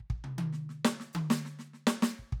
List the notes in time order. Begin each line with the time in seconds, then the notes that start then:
0.00 kick
0.10 kick
0.24 mid tom
0.38 high tom
0.53 snare
0.69 snare
0.85 snare
1.00 snare
1.13 hi-hat pedal, high tom
1.30 snare
1.45 snare
1.59 snare
1.73 snare
1.87 snare
2.02 snare
2.19 kick
2.32 kick